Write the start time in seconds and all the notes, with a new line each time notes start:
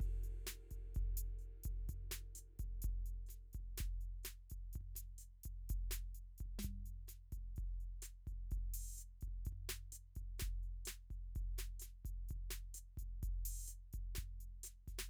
0.01 kick, closed hi-hat
0.07 kick
0.24 closed hi-hat
0.47 closed hi-hat, snare
0.71 closed hi-hat, kick
0.95 kick, closed hi-hat
1.03 kick
1.18 open hi-hat
1.39 closed hi-hat, hi-hat pedal
1.64 closed hi-hat, kick
1.71 kick
1.89 closed hi-hat, kick
1.95 kick
2.12 closed hi-hat, snare
2.36 hi-hat pedal
2.60 closed hi-hat, kick
2.65 kick
2.82 closed hi-hat, kick
2.91 kick
3.06 closed hi-hat
3.27 closed hi-hat, snare, hi-hat pedal, crash
3.54 closed hi-hat, kick
3.61 kick
3.78 closed hi-hat, kick, snare
3.87 kick
4.01 closed hi-hat
4.24 closed hi-hat, snare, hi-hat pedal
4.50 closed hi-hat, kick
4.74 closed hi-hat, kick
4.82 kick
4.96 open hi-hat, snare
5.19 closed hi-hat, hi-hat pedal
5.44 closed hi-hat, kick
5.70 closed hi-hat, kick
5.77 kick
5.91 closed hi-hat, snare
6.15 closed hi-hat
6.39 closed hi-hat, kick
6.46 kick
6.59 closed hi-hat, snare, mid tom
6.65 kick
6.71 kick
6.86 closed hi-hat
7.08 closed hi-hat, snare, hi-hat pedal
7.33 closed hi-hat, kick
7.38 kick
7.57 closed hi-hat, kick
7.64 kick
7.81 closed hi-hat
8.03 snare, hi-hat pedal
8.28 closed hi-hat, kick
8.33 kick
8.52 closed hi-hat, kick
8.58 kick
8.74 open hi-hat
8.98 open hi-hat, hi-hat pedal
9.22 closed hi-hat, kick
9.28 kick
9.46 closed hi-hat, kick
9.53 kick
9.69 closed hi-hat, snare
9.93 hi-hat pedal
10.16 closed hi-hat, kick
10.22 kick
10.39 closed hi-hat, kick, snare, hi-hat pedal
10.48 kick
10.64 closed hi-hat
10.86 closed hi-hat, snare, hi-hat pedal
11.11 closed hi-hat, kick
11.36 closed hi-hat, kick
11.42 kick
11.59 closed hi-hat, snare
11.80 closed hi-hat, snare, hi-hat pedal
12.06 closed hi-hat, kick
12.11 kick
12.29 closed hi-hat, kick
12.37 kick
12.51 closed hi-hat, snare
12.75 hi-hat pedal
12.98 closed hi-hat, kick
13.03 kick
13.23 closed hi-hat, kick
13.29 kick
13.46 open hi-hat
13.68 closed hi-hat, hi-hat pedal
13.93 closed hi-hat, kick
14.00 kick
14.16 closed hi-hat, kick, snare
14.24 kick
14.41 closed hi-hat
14.64 snare, hi-hat pedal
14.88 closed hi-hat, kick, snare
14.99 snare